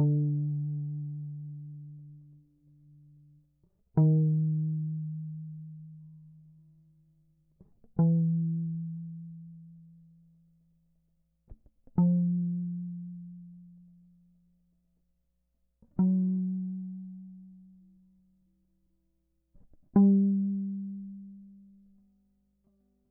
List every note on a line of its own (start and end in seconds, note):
0.00 2.23 D3
4.01 6.35 D#3
8.01 9.92 E3
11.99 13.82 F3
15.99 17.69 F#3
19.97 21.72 G3